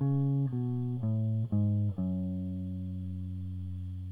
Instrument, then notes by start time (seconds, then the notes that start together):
electric guitar
0.03 C#3
0.52 B2
1.06 A2
1.55 G#2
2.01 F#2